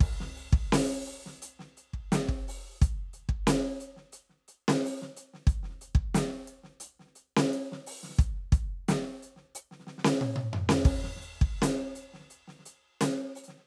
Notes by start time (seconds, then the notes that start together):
0.01 kick, crash
0.21 snare
0.36 open hi-hat
0.53 kick
0.73 open hi-hat, snare
1.07 open hi-hat
1.26 snare
1.42 closed hi-hat
1.60 snare
1.78 closed hi-hat
1.94 kick
2.12 closed hi-hat, snare
2.29 kick
2.48 open hi-hat
2.77 hi-hat pedal
2.82 closed hi-hat, kick
3.14 closed hi-hat
3.29 kick
3.47 closed hi-hat, snare
3.81 closed hi-hat
3.97 snare
4.13 closed hi-hat, hi-hat pedal
4.30 snare
4.48 closed hi-hat
4.69 snare
4.86 open hi-hat
5.02 snare
5.17 closed hi-hat
5.34 snare
5.47 closed hi-hat, kick
5.63 snare
5.70 snare
5.82 closed hi-hat
5.95 kick
6.15 closed hi-hat, snare
6.38 hi-hat pedal
6.48 closed hi-hat
6.64 snare
6.81 closed hi-hat
7.00 snare
7.06 snare
7.16 closed hi-hat
7.37 snare
7.54 closed hi-hat
7.72 snare
7.87 open hi-hat
8.04 snare
8.10 snare
8.17 closed hi-hat, kick, snare, hi-hat pedal
8.27 snare
8.31 snare
8.34 snare
8.42 snare
8.53 closed hi-hat, kick
8.89 closed hi-hat, snare
9.15 hi-hat pedal
9.23 closed hi-hat
9.37 snare
9.55 open hi-hat, hi-hat pedal
9.72 snare
9.80 snare, hi-hat pedal
9.87 snare
9.98 snare
10.05 snare
10.12 hi-hat pedal
10.22 high tom
10.36 high tom
10.54 mid tom
10.69 snare
10.85 kick, crash
11.04 snare
11.17 snare
11.22 closed hi-hat
11.42 kick
11.62 open hi-hat, snare
11.96 closed hi-hat
12.03 closed hi-hat
12.14 snare
12.20 snare
12.31 closed hi-hat
12.48 snare, hi-hat pedal
12.60 snare
12.66 closed hi-hat
13.01 closed hi-hat, snare
13.36 open hi-hat, hi-hat pedal
13.44 closed hi-hat
13.49 snare
13.58 snare